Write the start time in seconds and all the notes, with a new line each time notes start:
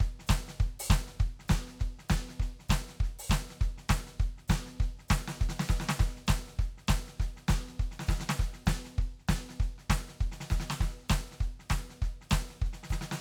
0.01 kick, snare
0.20 snare
0.28 kick, snare, hi-hat pedal
0.49 snare
0.61 kick, snare
0.80 open hi-hat
0.88 kick, snare, hi-hat pedal
1.08 snare
1.20 kick, snare
1.40 snare
1.49 kick, hi-hat pedal
1.68 snare
1.80 kick, snare
2.00 snare
2.10 kick, snare, hi-hat pedal
2.30 snare
2.41 kick, snare
2.60 snare
2.70 kick, snare, hi-hat pedal
2.89 snare
3.01 kick, snare
3.20 open hi-hat
3.29 kick, snare, hi-hat pedal
3.50 snare
3.62 kick, snare
3.79 snare
3.89 kick, snare, hi-hat pedal
4.08 snare
4.21 kick, snare
4.39 snare
4.49 kick, snare, hi-hat pedal
4.67 snare
4.81 kick, snare
5.00 snare
5.09 kick, snare, hi-hat pedal
5.29 snare
5.41 kick, snare
5.50 snare
5.60 snare
5.68 kick, snare, hi-hat pedal
5.81 snare
5.90 snare
6.00 kick, snare
6.17 snare
6.28 kick, snare, hi-hat pedal
6.49 snare
6.60 kick, snare
6.79 snare
6.88 kick, snare, hi-hat pedal
7.08 snare
7.21 kick, snare
7.38 snare
7.49 kick, snare, hi-hat pedal
7.69 snare
7.80 kick, snare
7.92 snare
8.00 snare
8.07 kick, snare, hi-hat pedal
8.21 snare
8.30 snare
8.40 kick, snare
8.54 snare
8.67 kick, snare, hi-hat pedal
8.86 snare
8.99 kick, snare
9.20 snare
9.29 kick, snare, hi-hat pedal
9.50 snare
9.61 kick, snare
9.79 snare
9.91 kick, snare, hi-hat pedal
10.09 snare
10.21 kick, snare
10.33 snare
10.41 snare
10.51 kick, snare, hi-hat pedal
10.61 snare
10.71 snare
10.81 kick, snare
11.00 snare
11.04 snare
11.10 kick, snare, hi-hat pedal
11.32 snare
11.41 kick, snare
11.60 snare
11.70 kick, snare, hi-hat pedal
11.91 snare
12.03 kick, snare
12.22 snare
12.31 kick, snare, hi-hat pedal
12.50 snare
12.62 kick, snare
12.74 snare
12.84 snare
12.90 kick, snare, hi-hat pedal
13.02 snare
13.12 snare